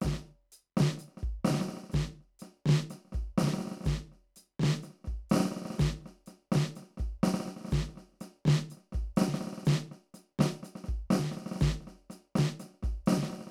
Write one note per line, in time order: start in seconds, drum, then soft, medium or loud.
0.03 kick soft
0.03 snare medium
0.03 hi-hat pedal medium
0.07 snare medium
0.13 snare soft
0.52 hi-hat pedal medium
0.77 snare medium
0.80 snare loud
0.91 snare soft
0.97 snare soft
0.97 hi-hat pedal medium
1.08 snare soft
1.11 snare soft
1.15 snare soft
1.17 snare soft
1.23 kick soft
1.45 snare medium
1.45 hi-hat pedal medium
1.47 snare medium
1.50 snare medium
1.54 snare medium
1.59 snare soft
1.61 snare medium
1.65 snare soft
1.68 snare soft
1.73 snare soft
1.77 snare soft
1.83 snare soft
1.90 kick soft
1.90 snare soft
1.90 hi-hat pedal medium
1.94 snare medium
2.04 snare soft
2.11 snare soft
2.14 snare soft
2.21 snare soft
2.39 snare soft
2.39 hi-hat pedal medium
2.66 snare medium
2.69 snare loud
2.90 snare soft
2.90 hi-hat pedal medium
2.98 snare soft
3.05 snare soft
3.07 snare soft
3.12 kick soft
3.12 snare soft
3.22 kick soft
3.38 snare medium
3.38 hi-hat pedal medium
3.41 snare medium
3.47 snare medium
3.53 snare medium
3.58 snare soft
3.60 snare soft
3.65 snare soft
3.67 snare soft
3.71 snare soft
3.77 snare soft
3.81 snare soft
3.84 kick soft
3.84 snare soft
3.84 hi-hat pedal medium
3.86 snare medium
3.95 snare soft
3.99 snare soft
4.06 snare soft
4.12 snare soft
4.36 snare soft
4.36 hi-hat pedal medium
4.59 snare medium
4.63 snare loud
4.72 snare soft
4.83 snare soft
4.83 hi-hat pedal medium
4.90 snare soft
4.95 snare soft
4.99 snare soft
5.01 snare soft
5.04 kick soft
5.04 snare soft
5.12 kick soft
5.29 snare medium
5.29 hi-hat pedal medium
5.34 snare medium
5.36 snare medium
5.40 snare medium
5.45 snare medium
5.51 snare soft
5.56 snare soft
5.62 snare soft
5.65 snare soft
5.70 snare soft
5.74 snare soft
5.78 kick soft
5.78 snare soft
5.78 snare loud
5.78 hi-hat pedal medium
5.93 snare soft
5.97 snare soft
6.01 snare soft
6.06 snare soft
6.26 snare soft
6.26 hi-hat pedal medium
6.52 snare medium
6.55 snare loud
6.64 snare soft
6.75 snare soft
6.75 hi-hat pedal medium
6.82 snare soft
6.91 snare soft
6.97 kick soft
6.97 snare soft
7.23 snare medium
7.23 hi-hat pedal medium
7.27 snare medium
7.34 snare medium
7.40 snare medium
7.45 snare soft
7.48 snare soft
7.56 snare soft
7.61 snare soft
7.65 snare soft
7.68 kick soft
7.68 snare soft
7.68 hi-hat pedal medium
7.72 snare medium
7.77 kick soft
7.82 snare soft
7.89 snare soft
7.96 snare soft
7.97 snare soft
8.08 snare soft
8.12 snare soft
8.14 snare soft
8.20 snare soft
8.20 hi-hat pedal medium
8.45 snare medium
8.48 snare loud
8.70 snare soft
8.70 hi-hat pedal medium
8.77 snare soft
8.92 kick soft
8.92 snare soft
9.00 kick soft
9.03 kick soft
9.16 snare medium
9.16 hi-hat pedal medium
9.21 snare medium
9.28 snare medium
9.34 snare medium
9.38 snare soft
9.41 snare soft
9.44 snare soft
9.47 snare soft
9.53 snare soft
9.58 snare soft
9.63 snare soft
9.63 hi-hat pedal medium
9.67 snare loud
9.71 snare soft
9.82 snare soft
9.85 snare soft
9.88 snare soft
9.91 snare soft
10.14 snare soft
10.14 hi-hat pedal medium
10.39 snare medium
10.40 snare medium
10.45 snare medium
10.63 snare soft
10.63 hi-hat pedal medium
10.75 snare soft
10.84 snare soft
10.88 kick soft
11.10 snare medium
11.10 hi-hat pedal medium
11.13 snare medium
11.15 snare medium
11.19 snare medium
11.24 snare soft
11.31 snare soft
11.37 snare soft
11.42 snare soft
11.46 snare soft
11.51 snare soft
11.56 snare soft
11.60 kick soft
11.60 snare loud
11.60 hi-hat pedal medium
11.67 kick soft
11.70 kick soft
11.70 snare soft
11.80 snare soft
11.85 snare soft
11.87 snare soft
11.95 snare soft
12.10 snare soft
12.10 hi-hat pedal medium
12.35 snare medium
12.38 snare loud
12.59 snare soft
12.59 hi-hat pedal medium
12.65 snare soft
12.71 snare soft
12.74 snare soft
12.83 kick soft
12.83 snare soft
12.92 kick soft
13.06 snare loud
13.06 hi-hat pedal medium
13.10 snare medium
13.12 snare medium
13.17 snare medium
13.23 snare soft
13.28 snare soft
13.30 snare soft
13.33 snare soft
13.38 snare soft
13.41 snare soft
13.47 snare soft